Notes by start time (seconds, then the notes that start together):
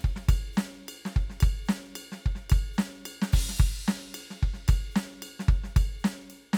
0.01 kick, ride
0.16 snare
0.29 kick, ride bell
0.53 snare, hi-hat pedal
0.88 ride bell
1.05 snare
1.16 kick
1.30 snare
1.40 kick, ride bell
1.66 snare, hi-hat pedal
1.96 ride bell
2.12 snare
2.26 kick
2.35 snare
2.50 kick, ride bell
2.74 hi-hat pedal
2.78 snare
3.06 ride bell
3.22 snare
3.33 kick, crash
3.49 snare
3.59 kick, ride bell
3.83 hi-hat pedal
3.88 snare
4.14 ride bell
4.30 snare
4.43 kick
4.54 snare
4.68 kick, ride bell
4.91 hi-hat pedal
4.96 snare
5.22 ride bell
5.40 snare
5.48 kick
5.64 snare
5.76 kick, ride bell
5.99 hi-hat pedal
6.04 snare
6.30 ride bell
6.53 snare